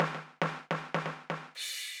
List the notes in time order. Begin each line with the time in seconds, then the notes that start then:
0.00 snare
0.14 snare
0.41 snare
0.71 snare
0.94 snare
1.06 snare
1.30 snare
1.55 crash